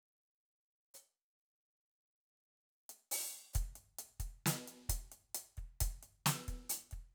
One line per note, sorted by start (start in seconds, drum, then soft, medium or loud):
0.94 hi-hat pedal medium
2.89 closed hi-hat medium
3.11 open hi-hat loud
3.53 kick soft
3.53 closed hi-hat medium
3.53 hi-hat pedal medium
3.75 closed hi-hat soft
3.99 closed hi-hat medium
4.20 kick soft
4.20 closed hi-hat medium
4.46 closed hi-hat loud
4.46 snare loud
4.68 closed hi-hat medium
4.89 kick soft
4.89 closed hi-hat loud
5.12 closed hi-hat soft
5.35 closed hi-hat loud
5.57 kick soft
5.57 closed hi-hat soft
5.80 kick soft
5.80 closed hi-hat loud
6.03 closed hi-hat soft
6.26 closed hi-hat loud
6.26 snare loud
6.48 kick soft
6.48 closed hi-hat soft
6.69 closed hi-hat loud
6.91 kick soft
6.91 closed hi-hat soft